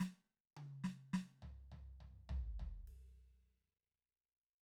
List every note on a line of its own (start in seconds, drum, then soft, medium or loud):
0.00 snare soft
0.00 hi-hat pedal soft
0.57 high tom medium
0.84 snare soft
1.14 snare medium
1.42 floor tom soft
1.72 floor tom soft
2.01 floor tom soft
2.29 floor tom medium
2.60 floor tom soft
2.88 crash soft